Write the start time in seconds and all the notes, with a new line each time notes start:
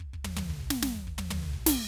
0.04 kick
0.13 kick
0.24 floor tom, high tom
0.36 floor tom, high tom
0.49 kick
0.60 kick
0.70 snare, ride
0.82 snare, ride
0.95 kick
1.07 kick
1.18 floor tom, high tom
1.30 floor tom, high tom
1.43 kick
1.53 kick
1.66 snare, crash